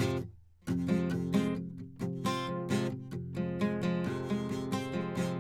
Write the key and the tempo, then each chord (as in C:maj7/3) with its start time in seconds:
F minor, 88 BPM
0.00 F:min